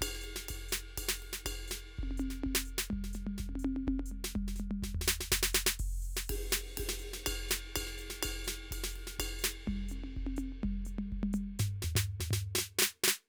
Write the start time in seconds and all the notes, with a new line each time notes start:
0.01 kick, ride bell
0.15 snare
0.21 hi-hat pedal, ride
0.36 snare
0.48 kick, ride bell
0.69 snare, hi-hat pedal
0.98 kick, ride bell
1.09 snare
1.17 hi-hat pedal
1.22 ride
1.33 snare
1.46 kick, ride bell
1.52 kick
1.68 snare, hi-hat pedal
1.99 kick
2.03 kick, high tom
2.11 high tom
2.17 hi-hat pedal, high tom
2.30 snare
2.44 kick, high tom
2.52 kick, snare
2.65 hi-hat pedal
2.78 snare
2.90 kick, mid tom
3.00 kick
3.04 snare
3.13 snare, hi-hat pedal, mid tom
3.27 mid tom
3.38 kick, snare
3.46 kick, high tom
3.55 hi-hat pedal, high tom
3.65 high tom
3.76 high tom
3.87 kick, high tom
3.94 kick
3.99 high tom
4.06 hi-hat pedal
4.11 mid tom
4.24 snare
4.35 kick, mid tom
4.43 kick
4.48 snare
4.56 snare, hi-hat pedal
4.60 mid tom
4.71 mid tom
4.83 kick, snare
4.89 kick
4.95 floor tom
5.01 snare, hi-hat pedal
5.08 snare
5.21 snare
5.32 kick, snare
5.39 kick, snare
5.53 snare, hi-hat pedal
5.66 snare
5.79 kick, crash
5.86 kick
5.91 kick
6.02 hi-hat pedal
6.17 snare
6.29 kick, ride
6.36 kick
6.50 snare, hi-hat pedal
6.77 kick, ride
6.86 kick, snare
6.99 hi-hat pedal, ride
7.13 snare
7.20 hi-hat pedal
7.26 kick, ride bell
7.48 snare, hi-hat pedal
7.76 kick, ride bell
7.83 kick
7.87 snare
7.98 hi-hat pedal, ride
8.10 snare
8.23 kick, ride bell
8.44 snare, hi-hat pedal
8.71 kick, ride bell
8.78 kick
8.84 snare
8.90 hi-hat pedal
8.96 ride
9.07 snare
9.19 kick, ride bell
9.39 hi-hat pedal
9.44 snare
9.67 kick, mid tom
9.75 kick
9.89 hi-hat pedal, high tom
10.04 high tom
10.16 kick, high tom
10.23 kick, high tom
10.36 hi-hat pedal, high tom
10.52 high tom
10.63 kick, mid tom
10.71 kick
10.85 hi-hat pedal, mid tom
10.98 mid tom
11.12 kick, mid tom
11.18 kick
11.23 mid tom
11.33 hi-hat pedal, mid tom
11.59 snare, hi-hat pedal, floor tom
11.82 snare, floor tom
11.95 snare, floor tom
12.20 snare, floor tom
12.31 snare, floor tom
12.55 snare
12.58 snare
12.79 snare
12.82 snare
13.04 snare
13.08 snare